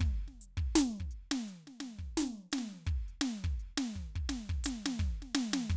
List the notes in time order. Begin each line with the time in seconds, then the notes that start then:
0.01 kick
0.28 snare
0.41 closed hi-hat
0.57 kick
0.66 closed hi-hat
0.76 snare
0.97 kick, closed hi-hat
1.11 closed hi-hat
1.32 snare
1.48 closed hi-hat
1.67 snare
1.81 snare, closed hi-hat
1.99 kick
2.18 open hi-hat, snare
2.22 snare
2.52 snare, open hi-hat
2.58 snare
2.73 snare
2.85 kick, closed hi-hat, hi-hat pedal
3.08 closed hi-hat
3.21 snare
3.44 kick, closed hi-hat
3.60 closed hi-hat
3.78 snare
3.96 kick, closed hi-hat
4.16 kick
4.29 snare, closed hi-hat
4.50 kick
4.64 closed hi-hat, snare
4.86 snare
5.00 kick, closed hi-hat
5.22 snare
5.35 snare
5.54 snare
5.70 kick, open hi-hat